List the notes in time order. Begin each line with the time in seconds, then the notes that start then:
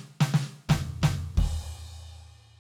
0.21 snare
0.34 snare
0.69 kick, snare, mid tom
1.02 kick, snare, mid tom
1.35 kick, cross-stick, crash